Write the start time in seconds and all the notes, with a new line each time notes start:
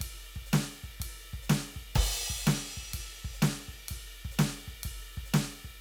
0.01 kick, ride
0.36 kick
0.46 hi-hat pedal
0.53 snare, ride
0.84 kick
1.00 kick, ride
1.34 kick
1.43 hi-hat pedal
1.50 snare, ride
1.76 kick
1.96 kick, crash
2.30 kick
2.38 hi-hat pedal
2.47 snare, ride
2.77 kick
2.94 kick, ride
3.25 kick
3.34 hi-hat pedal
3.42 snare, ride
3.69 kick
3.89 kick, ride
4.25 kick
4.32 hi-hat pedal
4.39 snare, ride
4.68 kick
4.84 kick, ride
5.18 kick
5.26 hi-hat pedal
5.34 snare, ride
5.65 kick